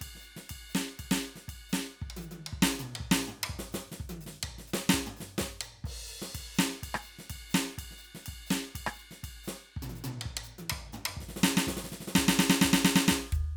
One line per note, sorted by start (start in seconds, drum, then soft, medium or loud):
0.01 kick soft
0.01 ride bell loud
0.07 kick soft
0.15 snare soft
0.20 hi-hat pedal medium
0.20 ride soft
0.36 snare medium
0.49 kick soft
0.49 ride bell loud
0.69 hi-hat pedal medium
0.75 snare medium
0.99 kick soft
0.99 ride bell loud
1.05 kick soft
1.11 snare loud
1.18 hi-hat pedal medium
1.22 ride soft
1.36 snare medium
1.48 kick soft
1.48 ride bell loud
1.54 kick soft
1.69 snare medium
1.69 hi-hat pedal medium
2.02 kick soft
2.09 kick soft
2.09 high tom medium
2.17 high tom loud
2.21 hi-hat pedal medium
2.31 high tom loud
2.46 high tom loud
2.53 kick soft
2.59 kick soft
2.59 snare loud
2.70 snare soft
2.70 hi-hat pedal medium
2.79 mid tom medium
2.95 mid tom loud
3.00 kick soft
3.06 kick soft
3.11 snare loud
3.19 snare soft
3.19 hi-hat pedal medium
3.27 floor tom loud
3.43 floor tom loud
3.49 kick soft
3.56 kick soft
3.56 snare medium
3.72 snare loud
3.72 hi-hat pedal medium
3.92 snare medium
4.00 kick soft
4.06 kick soft
4.06 high tom loud
4.21 hi-hat pedal medium
4.26 snare medium
4.43 kick soft
4.43 mid tom loud
4.50 kick soft
4.58 snare medium
4.67 hi-hat pedal medium
4.73 snare loud
4.89 snare loud
4.93 kick soft
5.00 kick soft
5.06 floor tom loud
5.17 snare medium
5.17 hi-hat pedal medium
5.38 kick soft
5.38 snare loud
5.47 kick soft
5.61 hi-hat pedal medium
5.61 mid tom loud
5.84 kick medium
5.84 crash loud
5.96 kick soft
6.07 hi-hat pedal medium
6.22 snare medium
6.35 kick soft
6.35 ride bell loud
6.41 kick soft
6.54 hi-hat pedal medium
6.59 snare loud
6.83 kick soft
6.83 ride bell loud
6.89 kick soft
6.94 cross-stick medium
7.02 hi-hat pedal medium
7.02 ride soft
7.19 snare medium
7.30 kick soft
7.30 ride bell loud
7.36 kick soft
7.50 hi-hat pedal medium
7.54 snare loud
7.71 hi-hat pedal soft
7.78 kick soft
7.78 ride bell loud
7.84 kick soft
7.91 snare soft
7.98 hi-hat pedal medium
8.04 ride soft
8.15 snare medium
8.26 kick soft
8.26 ride bell loud
8.34 kick soft
8.46 hi-hat pedal medium
8.51 snare loud
8.75 kick soft
8.75 ride bell loud
8.81 kick soft
8.86 cross-stick medium
8.94 hi-hat pedal medium
8.99 ride soft
9.11 snare soft
9.23 kick soft
9.23 ride bell loud
9.44 snare medium
9.44 hi-hat pedal medium
9.76 kick soft
9.82 kick soft
9.82 mid tom medium
9.89 high tom medium
9.95 hi-hat pedal medium
10.04 mid tom loud
10.21 mid tom loud
10.25 kick soft
10.32 kick soft
10.37 mid tom loud
10.43 hi-hat pedal medium
10.58 high tom loud
10.70 kick soft
10.70 floor tom loud
10.79 kick soft
10.92 floor tom loud
10.92 hi-hat pedal medium
11.05 floor tom loud
11.17 kick soft
11.17 snare medium
11.23 kick soft
11.29 snare medium
11.36 snare medium
11.36 hi-hat pedal medium
11.43 snare loud
11.57 snare loud
11.67 kick soft
11.67 snare loud
11.73 kick soft
11.73 snare medium
11.84 snare medium
11.84 hi-hat pedal medium
11.92 snare medium
12.00 snare medium
12.07 snare medium
12.15 kick soft
12.15 snare loud
12.24 kick soft
12.28 snare loud
12.38 snare loud
12.38 hi-hat pedal medium
12.50 snare loud
12.61 kick soft
12.61 snare loud
12.73 snare loud
12.85 snare loud
12.85 hi-hat pedal medium
12.96 snare loud
13.08 kick soft
13.08 snare loud
13.18 kick soft
13.32 hi-hat pedal medium
13.32 mid tom loud